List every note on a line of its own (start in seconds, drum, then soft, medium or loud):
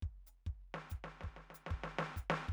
0.02 kick soft
0.26 hi-hat pedal medium
0.46 kick soft
0.74 snare soft
0.90 kick soft
0.90 hi-hat pedal medium
1.04 snare soft
1.21 kick soft
1.21 snare soft
1.36 snare soft
1.50 snare soft
1.54 hi-hat pedal medium
1.66 snare soft
1.70 kick soft
1.83 snare soft
1.98 snare medium
2.16 kick soft
2.16 hi-hat pedal medium
2.30 snare medium
2.48 kick soft